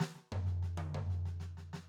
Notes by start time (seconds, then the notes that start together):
0.01 snare
0.16 snare
0.33 floor tom
0.47 snare
0.63 snare
0.78 high tom
0.95 floor tom
1.11 snare
1.26 snare
1.41 snare
1.58 snare
1.74 snare